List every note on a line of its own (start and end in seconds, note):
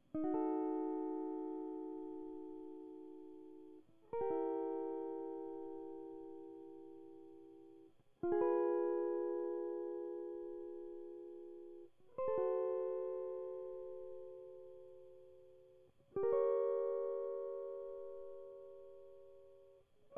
0.16 3.91 D#4
0.26 3.88 F#4
0.35 3.88 A4
4.13 7.78 A#4
4.23 7.95 G4
4.31 7.37 E4
8.28 11.52 F4
8.33 11.87 G#4
8.43 11.84 B4
12.19 15.39 C5
12.30 15.12 A4
12.39 15.34 F#4
16.17 19.86 G4
16.24 19.60 A#4
16.35 19.89 C#5